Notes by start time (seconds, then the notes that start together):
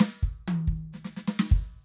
0.00 snare
0.23 kick
0.48 high tom
0.68 kick
0.93 snare, hi-hat pedal
1.05 snare
1.17 snare
1.28 snare
1.39 snare
1.52 kick